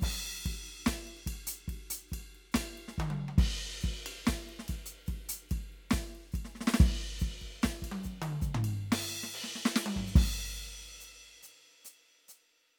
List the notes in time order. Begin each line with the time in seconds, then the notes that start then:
0.01 kick, hi-hat pedal, crash
0.23 ride
0.44 kick, hi-hat pedal, ride
0.66 ride
0.85 kick, snare, hi-hat pedal, ride bell
1.07 ride bell
1.17 open hi-hat
1.23 kick, hi-hat pedal
1.27 ride bell
1.47 closed hi-hat
1.68 kick, ride
1.90 open hi-hat
2.08 kick, hi-hat pedal
2.13 ride bell
2.35 ride
2.52 kick, snare, hi-hat pedal
2.56 ride bell
2.77 ride
2.88 snare
2.98 kick, hi-hat pedal, mid tom
3.10 high tom
3.28 high tom
3.38 kick, crash
3.81 kick, hi-hat pedal
4.06 ride bell
4.26 kick, snare, hi-hat pedal
4.49 ride
4.59 snare
4.68 kick, hi-hat pedal, ride bell
4.86 closed hi-hat
5.06 kick, hi-hat pedal, ride
5.29 closed hi-hat
5.49 kick, hi-hat pedal, ride bell
5.72 ride
5.90 kick, snare, hi-hat pedal, ride bell
6.15 ride
6.32 kick, hi-hat pedal, ride bell
6.45 snare
6.55 snare
6.61 snare
6.67 snare
6.74 snare
6.80 kick, crash
7.19 kick, hi-hat pedal
7.41 kick, snare, floor tom, mid tom, ride
7.62 kick, snare, hi-hat pedal
7.82 kick, ride bell
7.92 high tom
8.03 kick, hi-hat pedal
8.22 mid tom, ride bell
8.41 kick, hi-hat pedal
8.54 floor tom
8.64 ride bell
8.92 snare, crash
9.23 snare
9.34 crash
9.44 snare
9.55 snare
9.65 snare
9.76 snare, hi-hat pedal
9.86 high tom
9.96 kick, floor tom
10.06 open hi-hat
10.15 kick, crash
11.00 hi-hat pedal
11.43 hi-hat pedal
11.85 hi-hat pedal
12.28 hi-hat pedal